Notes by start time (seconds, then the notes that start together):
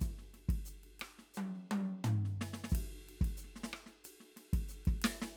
0.01 kick, hi-hat pedal, ride
0.19 snare
0.34 snare, ride
0.49 kick, ride
0.66 hi-hat pedal
0.84 ride
1.00 cross-stick, ride
1.19 snare
1.34 hi-hat pedal, high tom
1.55 snare
1.71 high tom
1.85 snare
2.04 floor tom, hi-hat pedal
2.25 snare
2.36 kick
2.41 snare
2.54 snare
2.64 snare
2.69 kick, hi-hat pedal
2.75 ride
3.09 ride
3.21 kick, ride
3.37 hi-hat pedal
3.44 snare
3.56 snare
3.64 snare
3.73 cross-stick
3.86 snare
4.04 hi-hat pedal, ride
4.20 snare
4.37 snare, ride
4.53 kick, ride
4.69 snare, hi-hat pedal
4.86 kick, ride
5.02 snare, ride
5.22 snare